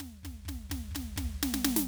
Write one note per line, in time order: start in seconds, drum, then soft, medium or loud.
0.00 kick soft
0.00 snare soft
0.00 floor tom soft
0.23 kick soft
0.23 snare soft
0.23 floor tom soft
0.45 kick soft
0.45 snare medium
0.45 floor tom medium
0.70 kick soft
0.70 snare medium
0.70 floor tom medium
0.91 kick soft
0.91 floor tom medium
0.96 snare medium
1.16 kick soft
1.16 snare medium
1.16 floor tom medium
1.43 snare loud
1.54 snare medium
1.64 snare loud
1.76 snare medium